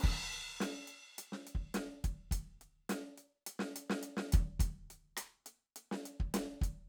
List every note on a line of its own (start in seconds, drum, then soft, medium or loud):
0.01 kick medium
0.01 crash loud
0.33 open hi-hat soft
0.61 snare medium
0.61 open hi-hat medium
0.88 closed hi-hat medium
1.19 closed hi-hat loud
1.33 snare medium
1.48 open hi-hat medium
1.56 kick medium
1.75 snare medium
1.75 closed hi-hat medium
2.05 kick medium
2.05 closed hi-hat medium
2.32 kick medium
2.32 closed hi-hat loud
2.62 open hi-hat soft
2.90 snare medium
2.90 open hi-hat loud
3.18 open hi-hat medium
3.47 closed hi-hat loud
3.60 snare medium
3.77 closed hi-hat loud
3.90 snare medium
4.04 closed hi-hat medium
4.18 snare medium
4.33 kick loud
4.33 closed hi-hat loud
4.60 kick medium
4.60 closed hi-hat loud
4.91 open hi-hat medium
5.18 cross-stick medium
5.18 closed hi-hat loud
5.47 closed hi-hat medium
5.77 closed hi-hat medium
5.92 snare medium
6.06 closed hi-hat medium
6.21 kick medium
6.35 snare loud
6.35 closed hi-hat loud
6.62 kick medium
6.62 closed hi-hat medium